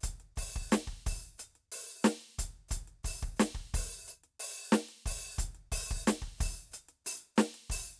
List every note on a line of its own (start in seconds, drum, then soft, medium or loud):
0.01 closed hi-hat loud
0.01 kick medium
0.01 hi-hat pedal soft
0.20 closed hi-hat soft
0.36 open hi-hat loud
0.36 kick medium
0.36 hi-hat pedal soft
0.56 kick medium
0.69 closed hi-hat loud
0.69 snare loud
0.69 hi-hat pedal medium
0.88 kick soft
0.88 closed hi-hat soft
1.07 open hi-hat loud
1.07 kick medium
1.38 closed hi-hat medium
1.38 hi-hat pedal soft
1.56 closed hi-hat soft
1.72 open hi-hat loud
2.03 closed hi-hat loud
2.03 snare loud
2.03 hi-hat pedal soft
2.21 closed hi-hat soft
2.39 closed hi-hat loud
2.39 kick medium
2.69 closed hi-hat loud
2.69 kick medium
2.69 hi-hat pedal medium
2.88 closed hi-hat soft
3.04 open hi-hat loud
3.04 kick medium
3.04 hi-hat pedal soft
3.23 kick medium
3.37 closed hi-hat loud
3.37 snare loud
3.37 hi-hat pedal soft
3.55 kick soft
3.55 closed hi-hat soft
3.72 open hi-hat loud
3.72 kick medium
3.72 hi-hat pedal soft
4.08 open hi-hat medium
4.08 hi-hat pedal soft
4.24 closed hi-hat soft
4.40 open hi-hat loud
4.72 open hi-hat medium
4.72 snare loud
4.72 hi-hat pedal soft
4.89 closed hi-hat soft
5.06 open hi-hat loud
5.06 kick medium
5.37 closed hi-hat loud
5.37 kick medium
5.37 hi-hat pedal medium
5.55 closed hi-hat soft
5.72 open hi-hat loud
5.72 kick medium
5.91 kick medium
6.03 closed hi-hat loud
6.03 hi-hat pedal medium
6.08 snare loud
6.22 kick soft
6.22 closed hi-hat soft
6.38 open hi-hat loud
6.38 kick medium
6.38 hi-hat pedal soft
6.72 closed hi-hat medium
6.72 hi-hat pedal soft
6.89 closed hi-hat soft
7.05 open hi-hat loud
7.05 hi-hat pedal soft
7.36 closed hi-hat medium
7.36 snare loud
7.36 hi-hat pedal soft
7.54 closed hi-hat soft
7.70 open hi-hat loud
7.70 kick medium
7.70 hi-hat pedal soft